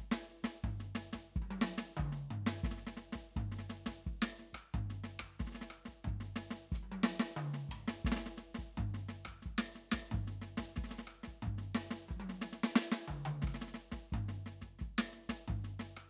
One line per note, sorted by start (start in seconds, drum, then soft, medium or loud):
0.12 snare medium
0.28 snare soft
0.28 hi-hat pedal soft
0.43 kick soft
0.43 snare medium
0.64 kick soft
0.64 floor tom medium
0.80 snare soft
0.95 snare medium
1.00 hi-hat pedal soft
1.13 kick soft
1.13 snare medium
1.36 kick medium
1.42 high tom soft
1.51 high tom medium
1.61 snare loud
1.67 hi-hat pedal medium
1.78 snare medium
1.97 kick soft
1.97 mid tom medium
2.12 snare soft
2.31 floor tom medium
2.31 hi-hat pedal soft
2.46 snare medium
2.64 kick medium
2.64 snare medium
2.71 snare soft
2.78 snare soft
2.87 snare medium
2.99 hi-hat pedal soft
3.12 kick soft
3.12 snare medium
3.36 kick soft
3.36 floor tom medium
3.52 snare soft
3.59 snare soft
3.70 snare medium
3.70 hi-hat pedal medium
3.86 kick soft
3.86 snare medium
4.07 kick soft
4.22 snare medium
4.39 snare soft
4.39 hi-hat pedal soft
4.53 kick soft
4.53 cross-stick medium
4.74 kick soft
4.74 floor tom medium
4.90 snare soft
5.04 snare soft
5.09 hi-hat pedal soft
5.19 kick soft
5.19 cross-stick medium
5.39 kick soft
5.39 snare soft
5.47 snare soft
5.52 snare soft
5.55 snare soft
5.61 snare soft
5.70 cross-stick medium
5.75 hi-hat pedal soft
5.85 kick soft
5.85 snare soft
6.04 kick soft
6.04 floor tom medium
6.20 snare soft
6.36 snare medium
6.36 hi-hat pedal medium
6.51 snare medium
6.72 kick soft
6.72 hi-hat pedal loud
6.81 kick soft
6.81 high tom soft
6.92 high tom medium
7.03 snare loud
7.20 snare medium
7.37 mid tom medium
7.54 snare soft
7.69 kick soft
7.69 floor tom medium
7.88 snare medium
8.05 kick medium
8.05 snare medium
8.12 snare medium
8.19 snare soft
8.26 snare soft
8.36 snare soft
8.36 hi-hat pedal soft
8.54 snare medium
8.59 kick soft
8.77 kick soft
8.77 floor tom medium
8.94 snare soft
9.09 snare soft
9.09 hi-hat pedal soft
9.25 kick soft
9.25 cross-stick medium
9.42 kick soft
9.42 snare soft
9.58 snare medium
9.75 snare soft
9.75 hi-hat pedal soft
9.92 kick soft
9.92 snare medium
10.11 kick soft
10.11 floor tom medium
10.27 snare soft
10.42 snare soft
10.46 hi-hat pedal soft
10.57 kick soft
10.57 snare medium
10.76 kick soft
10.76 snare soft
10.84 snare soft
10.89 snare soft
10.91 snare medium
10.98 snare soft
11.07 cross-stick medium
11.14 hi-hat pedal soft
11.23 snare soft
11.28 kick soft
11.42 floor tom medium
11.47 kick soft
11.58 snare soft
11.75 snare medium
11.75 hi-hat pedal soft
11.91 snare medium
12.08 kick soft
12.08 high tom soft
12.20 high tom medium
12.29 snare soft
12.41 snare medium
12.51 snare soft
12.51 hi-hat pedal soft
12.63 snare medium
12.76 snare loud
12.81 hi-hat pedal loud
12.92 snare medium
13.08 kick soft
13.08 hi-hat pedal medium
13.08 mid tom medium
13.25 mid tom medium
13.42 kick soft
13.42 snare medium
13.47 cross-stick soft
13.52 cross-stick soft
13.52 snare soft
13.61 snare medium
13.68 snare soft
13.74 snare medium
13.74 hi-hat pedal soft
13.92 kick soft
13.92 snare medium
14.12 kick soft
14.12 floor tom medium
14.29 snare soft
14.45 snare soft
14.45 hi-hat pedal soft
14.62 kick soft
14.62 snare soft
14.79 kick soft
14.79 snare soft
14.98 snare loud
15.12 snare soft
15.12 hi-hat pedal medium
15.29 kick soft
15.29 snare medium
15.48 kick soft
15.48 floor tom medium
15.64 snare soft
15.79 snare medium
15.79 hi-hat pedal soft
15.97 cross-stick medium